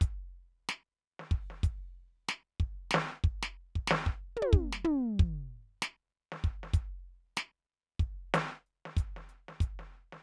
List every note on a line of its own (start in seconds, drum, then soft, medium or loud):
0.01 closed hi-hat loud
0.01 kick medium
0.69 closed hi-hat medium
0.69 snare loud
1.19 snare soft
1.31 kick medium
1.31 closed hi-hat soft
1.35 crash soft
1.50 snare soft
1.63 closed hi-hat medium
1.63 kick medium
2.28 closed hi-hat medium
2.28 snare loud
2.60 kick medium
2.91 snare loud
2.94 snare loud
3.24 kick medium
3.43 snare loud
3.75 kick medium
3.87 snare loud
3.91 snare loud
4.06 kick medium
4.36 mid tom loud
4.42 high tom loud
4.53 kick loud
4.72 snare loud
4.84 floor tom loud
5.16 kick soft
5.19 kick medium
5.82 closed hi-hat loud
5.82 snare loud
6.32 snare medium
6.44 kick medium
6.44 closed hi-hat soft
6.63 snare soft
6.73 closed hi-hat loud
6.73 kick medium
7.37 closed hi-hat loud
7.37 snare loud
7.99 closed hi-hat soft
7.99 kick medium
8.34 closed hi-hat loud
8.34 snare loud
8.66 closed hi-hat soft
8.85 snare soft
8.97 closed hi-hat medium
8.97 kick medium
8.97 snare soft
9.16 snare soft
9.29 closed hi-hat soft
9.48 snare soft
9.60 closed hi-hat medium
9.60 kick medium
9.79 snare soft
9.93 closed hi-hat soft
10.12 snare soft